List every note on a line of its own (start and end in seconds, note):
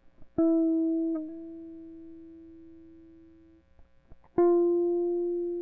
0.38 1.17 E4
1.16 1.30 D#4
1.29 3.27 E4
4.38 5.61 F4